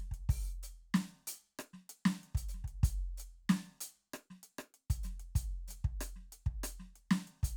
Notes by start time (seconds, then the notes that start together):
0.01 snare
0.12 kick, closed hi-hat
0.29 open hi-hat, kick
0.63 open hi-hat, hi-hat pedal
0.94 snare, closed hi-hat
1.12 snare
1.27 closed hi-hat
1.59 cross-stick, closed hi-hat
1.74 snare
1.90 closed hi-hat
2.06 snare
2.24 closed hi-hat
2.28 snare
2.35 open hi-hat, kick
2.49 hi-hat pedal
2.54 snare
2.64 kick, closed hi-hat
2.84 open hi-hat, kick
3.18 closed hi-hat, hi-hat pedal
3.50 snare, closed hi-hat
3.66 snare
3.81 closed hi-hat
4.14 cross-stick, closed hi-hat
4.31 snare
4.43 closed hi-hat
4.59 cross-stick
4.74 closed hi-hat
4.90 open hi-hat, kick
5.04 snare, hi-hat pedal
5.20 kick, closed hi-hat
5.36 open hi-hat, kick
5.56 kick
5.68 snare, closed hi-hat, hi-hat pedal
5.85 kick
6.01 closed hi-hat, cross-stick
6.16 snare
6.33 closed hi-hat
6.46 kick
6.64 closed hi-hat, cross-stick
6.80 snare
6.96 closed hi-hat
7.11 snare
7.28 closed hi-hat
7.43 open hi-hat, kick